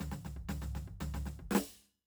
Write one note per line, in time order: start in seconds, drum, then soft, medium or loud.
0.00 snare soft
0.00 floor tom medium
0.11 snare soft
0.11 floor tom soft
0.25 snare soft
0.25 floor tom soft
0.36 kick soft
0.49 snare medium
0.49 floor tom medium
0.62 snare soft
0.62 floor tom soft
0.75 snare soft
0.75 floor tom soft
0.87 kick soft
1.00 snare soft
1.00 floor tom medium
1.14 snare soft
1.14 floor tom medium
1.26 snare soft
1.26 floor tom soft
1.39 kick soft
1.51 snare medium
1.55 snare loud